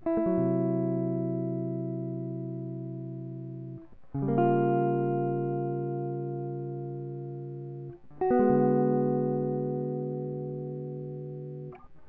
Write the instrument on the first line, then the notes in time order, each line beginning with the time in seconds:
electric guitar
0.07 E4
0.18 A3
0.27 F#3
0.32 C3
4.16 C#3
4.23 G3
4.29 A#3
4.38 F4
8.22 F#4
8.31 B3
8.40 G#3
8.45 D3